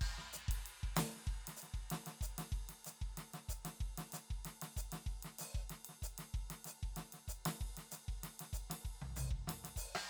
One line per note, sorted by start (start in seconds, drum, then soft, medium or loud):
0.01 kick medium
0.01 ride medium
0.18 snare soft
0.33 snare soft
0.33 hi-hat pedal loud
0.48 kick medium
0.48 ride medium
0.66 ride medium
0.83 kick soft
0.96 snare medium
0.96 hi-hat pedal medium
0.96 ride loud
1.16 snare soft
1.27 kick soft
1.47 snare soft
1.47 ride medium
1.57 hi-hat pedal medium
1.62 snare soft
1.62 ride medium
1.74 kick soft
1.90 snare medium
1.90 ride medium
2.06 snare soft
2.06 ride medium
2.21 kick soft
2.21 hi-hat pedal medium
2.38 snare soft
2.38 ride medium
2.52 kick soft
2.69 snare soft
2.69 ride medium
2.85 snare soft
2.85 hi-hat pedal medium
2.85 ride medium
3.01 kick soft
3.17 snare soft
3.17 ride medium
3.34 snare soft
3.34 ride medium
3.49 kick soft
3.49 hi-hat pedal medium
3.65 snare soft
3.65 ride medium
3.81 kick soft
3.98 snare soft
3.98 ride medium
4.12 snare soft
4.12 hi-hat pedal medium
4.12 ride medium
4.30 kick soft
4.45 snare soft
4.45 ride medium
4.62 snare soft
4.62 ride medium
4.77 kick soft
4.77 hi-hat pedal medium
4.92 snare soft
4.92 ride medium
5.06 kick soft
5.23 snare soft
5.23 ride medium
5.39 snare soft
5.39 hi-hat pedal medium
5.39 ride medium
5.55 kick soft
5.70 snare soft
5.70 ride medium
5.85 ride medium
5.89 snare soft
6.02 kick soft
6.02 hi-hat pedal medium
6.18 snare soft
6.18 ride medium
6.34 kick soft
6.50 snare soft
6.50 ride medium
6.65 snare soft
6.65 hi-hat pedal medium
6.65 ride medium
6.83 kick soft
6.96 snare soft
6.96 ride medium
7.12 snare soft
7.12 ride medium
7.28 kick soft
7.28 hi-hat pedal medium
7.46 snare medium
7.46 ride loud
7.61 kick soft
7.77 snare soft
7.77 ride medium
7.91 snare soft
7.91 hi-hat pedal medium
7.91 ride medium
8.08 kick soft
8.23 snare soft
8.23 ride medium
8.39 snare soft
8.39 ride medium
8.53 kick soft
8.53 hi-hat pedal medium
8.70 snare soft
8.70 ride loud
8.85 kick soft
9.02 floor tom medium
9.02 high tom soft
9.16 floor tom medium
9.16 hi-hat pedal medium
9.16 high tom medium
9.31 kick soft
9.47 snare soft
9.47 ride loud
9.64 snare soft
9.64 ride medium
9.76 kick soft
9.76 hi-hat pedal medium
9.95 cross-stick medium
9.95 ride medium